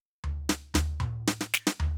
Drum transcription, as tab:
SD |----o-o---oooo--|
T2 |--------o-------|
FT |--o---o-------o-|